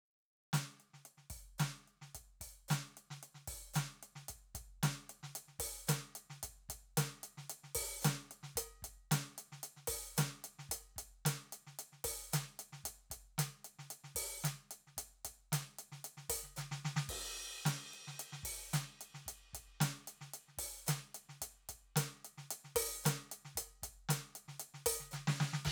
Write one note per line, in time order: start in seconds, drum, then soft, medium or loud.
0.53 closed hi-hat medium
0.53 snare medium
0.80 closed hi-hat soft
0.93 snare soft
1.05 closed hi-hat soft
1.17 snare soft
1.30 kick soft
1.30 open hi-hat medium
1.58 snare medium
1.58 closed hi-hat medium
1.58 hi-hat pedal soft
1.87 closed hi-hat soft
2.01 snare soft
2.15 kick soft
2.15 closed hi-hat medium
2.41 kick soft
2.41 open hi-hat medium
2.68 closed hi-hat medium
2.68 snare medium
2.68 hi-hat pedal medium
2.97 closed hi-hat soft
3.10 snare soft
3.23 closed hi-hat soft
3.34 snare soft
3.47 kick soft
3.47 open hi-hat medium
3.74 snare medium
3.74 closed hi-hat medium
3.74 hi-hat pedal medium
4.03 closed hi-hat soft
4.15 snare soft
4.28 kick soft
4.28 closed hi-hat medium
4.55 kick soft
4.55 closed hi-hat medium
4.83 snare medium
4.83 closed hi-hat medium
5.09 closed hi-hat soft
5.23 snare soft
5.35 closed hi-hat medium
5.48 snare soft
5.59 kick soft
5.59 open hi-hat loud
5.87 snare medium
5.87 closed hi-hat loud
5.87 hi-hat pedal medium
6.15 closed hi-hat medium
6.30 snare soft
6.43 kick soft
6.43 closed hi-hat medium
6.69 kick soft
6.69 closed hi-hat medium
6.97 snare medium
6.97 closed hi-hat loud
7.23 closed hi-hat medium
7.37 snare soft
7.49 closed hi-hat medium
7.63 snare soft
7.75 kick soft
7.75 open hi-hat loud
8.02 snare medium
8.02 closed hi-hat loud
8.02 hi-hat pedal medium
8.31 closed hi-hat soft
8.43 snare soft
8.55 kick soft
8.55 closed hi-hat loud
8.82 kick soft
8.82 closed hi-hat medium
9.11 snare medium
9.11 closed hi-hat loud
9.38 closed hi-hat medium
9.52 snare soft
9.63 closed hi-hat medium
9.76 snare soft
9.87 kick soft
9.87 open hi-hat loud
10.17 snare medium
10.17 closed hi-hat loud
10.17 hi-hat pedal medium
10.44 closed hi-hat medium
10.59 snare soft
10.69 kick soft
10.69 closed hi-hat loud
10.96 kick soft
10.96 closed hi-hat medium
11.25 snare medium
11.25 closed hi-hat loud
11.52 closed hi-hat medium
11.67 snare soft
11.79 closed hi-hat medium
11.92 snare soft
12.04 kick soft
12.04 open hi-hat loud
12.32 snare medium
12.32 closed hi-hat loud
12.32 hi-hat pedal medium
12.59 closed hi-hat medium
12.72 snare soft
12.84 kick soft
12.84 closed hi-hat medium
13.10 kick soft
13.10 closed hi-hat medium
13.38 snare medium
13.38 closed hi-hat loud
13.64 closed hi-hat medium
13.79 snare soft
13.90 closed hi-hat medium
14.04 snare soft
14.15 kick soft
14.15 open hi-hat loud
14.44 snare medium
14.44 closed hi-hat medium
14.44 hi-hat pedal medium
14.71 closed hi-hat medium
14.87 snare soft
14.97 kick soft
14.97 closed hi-hat medium
15.25 kick soft
15.25 closed hi-hat medium
15.52 snare medium
15.52 closed hi-hat loud
15.78 closed hi-hat medium
15.92 snare soft
16.04 closed hi-hat medium
16.17 snare soft
16.29 kick soft
16.29 open hi-hat loud
16.43 snare soft
16.56 snare medium
16.56 hi-hat pedal medium
16.71 snare medium
16.85 snare medium
16.96 snare medium
17.08 kick soft
17.08 crash medium
17.65 snare medium
17.65 closed hi-hat medium
17.93 closed hi-hat soft
18.07 snare soft
18.19 closed hi-hat medium
18.32 snare soft
18.43 kick soft
18.43 open hi-hat medium
18.73 snare medium
18.73 hi-hat pedal medium
18.73 open hi-hat medium
19.01 closed hi-hat medium
19.14 snare soft
19.26 kick soft
19.26 closed hi-hat medium
19.53 kick soft
19.53 closed hi-hat medium
19.80 snare medium
19.80 closed hi-hat medium
20.07 closed hi-hat medium
20.21 snare soft
20.33 closed hi-hat medium
20.48 snare soft
20.58 kick soft
20.58 open hi-hat medium
20.86 snare medium
20.86 closed hi-hat loud
20.86 hi-hat pedal medium
21.14 closed hi-hat medium
21.29 snare soft
21.41 kick soft
21.41 closed hi-hat medium
21.69 kick soft
21.69 closed hi-hat medium
21.96 snare medium
21.96 closed hi-hat loud
22.24 closed hi-hat medium
22.37 snare soft
22.50 closed hi-hat medium
22.64 snare soft
22.75 kick soft
22.75 open hi-hat loud
23.04 snare medium
23.04 closed hi-hat loud
23.04 hi-hat pedal medium
23.31 closed hi-hat medium
23.45 snare soft
23.55 kick soft
23.55 closed hi-hat loud
23.82 kick soft
23.82 closed hi-hat medium
24.09 snare medium
24.09 closed hi-hat loud
24.35 closed hi-hat medium
24.48 snare soft
24.59 closed hi-hat medium
24.74 snare soft
24.86 kick soft
24.86 open hi-hat loud
25.00 snare soft
25.11 snare medium
25.11 hi-hat pedal medium
25.27 snare medium
25.40 snare medium
25.53 snare medium
25.65 kick soft
25.65 snare medium
25.65 ride loud